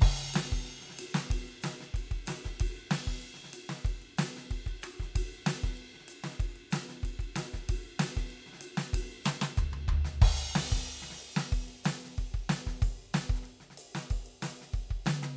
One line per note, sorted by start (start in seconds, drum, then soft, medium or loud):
0.01 kick loud
0.01 crash loud
0.34 snare loud
0.34 hi-hat pedal medium
0.34 ride loud
0.52 kick medium
0.67 ride soft
0.81 snare soft
0.90 snare soft
0.99 hi-hat pedal medium
0.99 ride loud
1.15 snare loud
1.30 kick medium
1.30 ride loud
1.48 ride soft
1.62 snare loud
1.62 hi-hat pedal medium
1.62 ride medium
1.81 snare soft
1.94 kick medium
1.94 ride medium
2.11 kick medium
2.11 ride medium
2.26 snare medium
2.26 hi-hat pedal medium
2.26 ride loud
2.45 kick soft
2.45 snare soft
2.60 kick medium
2.60 ride loud
2.91 snare loud
2.91 hi-hat pedal medium
2.91 ride medium
3.07 kick medium
3.07 snare soft
3.12 snare soft
3.22 ride soft
3.34 snare soft
3.44 snare soft
3.48 snare soft
3.53 hi-hat pedal medium
3.53 ride medium
3.69 snare medium
3.85 kick medium
3.85 ride medium
4.02 ride soft
4.18 snare loud
4.18 hi-hat pedal medium
4.18 ride loud
4.37 snare soft
4.51 kick soft
4.51 ride medium
4.66 kick soft
4.66 ride soft
4.82 cross-stick medium
4.82 hi-hat pedal medium
4.82 ride loud
5.00 kick soft
5.00 snare soft
5.16 kick medium
5.16 ride loud
5.47 snare loud
5.47 hi-hat pedal medium
5.47 ride loud
5.64 kick medium
5.64 snare soft
5.77 ride medium
5.94 snare soft
6.00 snare soft
6.08 hi-hat pedal medium
6.08 ride medium
6.24 snare medium
6.40 kick medium
6.40 ride medium
6.56 ride soft
6.71 snare loud
6.71 hi-hat pedal medium
6.71 ride loud
6.89 snare soft
7.03 kick medium
7.03 ride medium
7.19 kick soft
7.19 ride medium
7.36 snare loud
7.36 hi-hat pedal medium
7.36 ride loud
7.54 kick soft
7.54 snare soft
7.69 kick medium
7.69 ride loud
8.00 snare loud
8.00 hi-hat pedal medium
8.00 ride loud
8.17 kick medium
8.17 snare soft
8.31 ride medium
8.46 snare soft
8.53 snare soft
8.56 snare soft
8.58 snare soft
8.58 ride medium
8.62 hi-hat pedal medium
8.78 snare loud
8.93 kick medium
8.93 ride loud
9.23 kick soft
9.23 snare loud
9.23 hi-hat pedal medium
9.23 ride medium
9.42 snare loud
9.57 kick medium
9.57 floor tom loud
9.57 hi-hat pedal medium
9.73 floor tom loud
9.88 kick medium
9.88 floor tom loud
10.05 snare medium
10.22 kick loud
10.22 hi-hat pedal soft
10.22 crash loud
10.55 snare loud
10.55 hi-hat pedal medium
10.55 crash medium
10.72 kick medium
10.72 snare soft
10.85 snare soft
10.85 hi-hat pedal medium
11.02 snare medium
11.11 snare medium
11.14 snare soft
11.17 snare soft
11.17 hi-hat pedal medium
11.17 crash medium
11.37 snare loud
11.52 kick medium
11.52 crash medium
11.69 crash soft
11.84 snare loud
11.84 hi-hat pedal medium
11.84 crash medium
12.05 snare soft
12.18 kick medium
12.18 crash soft
12.34 kick medium
12.34 crash soft
12.49 snare loud
12.49 hi-hat pedal medium
12.49 crash medium
12.67 kick soft
12.67 snare soft
12.82 kick medium
12.82 crash medium
13.14 snare loud
13.14 hi-hat pedal medium
13.14 crash medium
13.30 kick medium
13.35 snare soft
13.43 snare soft
13.43 crash soft
13.60 snare soft
13.70 snare soft
13.78 hi-hat pedal medium
13.78 crash medium
13.95 snare loud
14.11 kick medium
14.11 crash medium
14.26 crash soft
14.42 snare loud
14.42 hi-hat pedal medium
14.42 crash medium
14.61 snare soft
14.74 kick medium
14.74 crash soft
14.91 kick medium
15.05 snare loud
15.05 hi-hat pedal medium
15.05 high tom loud
15.23 snare medium